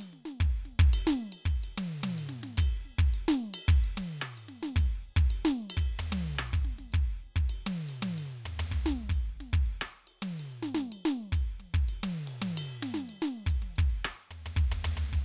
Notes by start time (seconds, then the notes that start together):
0.01 hi-hat pedal, ride bell
0.13 snare
0.26 snare
0.40 kick, ride
0.55 hi-hat pedal
0.66 snare
0.80 kick
0.94 ride bell
1.07 snare, hi-hat pedal
1.17 snare
1.33 ride bell
1.46 kick
1.63 hi-hat pedal, ride bell
1.78 high tom
2.04 high tom
2.17 hi-hat pedal, ride bell
2.29 snare
2.44 snare
2.58 kick, ride bell
2.71 hi-hat pedal
2.86 snare
2.99 kick
3.14 ride bell
3.25 snare, hi-hat pedal
3.54 ride bell
3.69 kick
3.81 hi-hat pedal, ride bell
3.98 high tom
4.22 cross-stick
4.35 hi-hat pedal, ride bell
4.49 snare
4.63 snare
4.76 kick, ride bell
4.90 hi-hat pedal
5.17 kick
5.31 ride bell
5.43 snare, hi-hat pedal
5.70 ride bell
5.77 kick
5.96 floor tom, hi-hat pedal
6.12 high tom
6.39 cross-stick
6.53 kick, hi-hat pedal, ride bell
6.65 snare
6.79 snare
6.93 kick, ride bell
7.09 hi-hat pedal
7.24 snare
7.36 kick
7.50 ride bell
7.64 hi-hat pedal, high tom
7.89 ride bell
8.03 high tom
8.18 hi-hat pedal, ride bell
8.46 floor tom
8.60 floor tom
8.72 kick, snare, percussion, hi-hat pedal, ride
8.86 snare
9.10 kick, ride bell
9.28 hi-hat pedal
9.41 snare
9.53 kick
9.66 ride
9.81 cross-stick, hi-hat pedal
10.07 ride bell
10.22 high tom
10.34 hi-hat pedal
10.40 ride bell
10.63 snare
10.75 snare
10.89 hi-hat pedal, ride bell
11.06 snare
11.33 kick, ride bell
11.46 hi-hat pedal
11.60 high tom
11.74 kick
11.89 ride bell
12.00 hi-hat pedal, high tom
12.28 ride
12.42 high tom
12.54 hi-hat pedal, ride bell
12.83 snare
12.94 snare
13.07 hi-hat pedal, ride bell
13.22 snare
13.38 ride
13.47 kick, ride bell
13.60 hi-hat pedal, high tom
13.76 kick, ride bell
13.90 ride bell
14.05 cross-stick
14.15 hi-hat pedal
14.20 ride
14.31 floor tom
14.46 floor tom
14.57 kick
14.72 floor tom, hi-hat pedal
14.85 floor tom
14.97 floor tom
15.13 kick